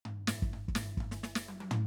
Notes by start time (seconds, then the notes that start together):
0.05 floor tom
0.27 snare, floor tom
0.42 kick
0.53 floor tom
0.68 kick
0.75 snare, floor tom
0.97 kick, floor tom
1.11 snare
1.23 snare
1.35 snare
1.48 high tom
1.60 high tom
1.71 floor tom